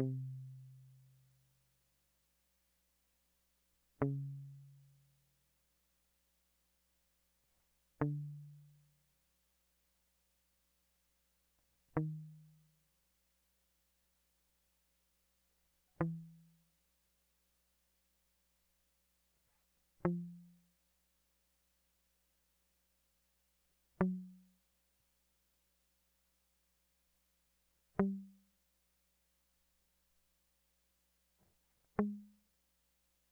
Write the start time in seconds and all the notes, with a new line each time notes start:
0.00 C3
4.03 C#3
8.02 D3
11.97 D#3
16.01 E3
20.06 F3
24.01 F#3
28.00 G3
31.99 G#3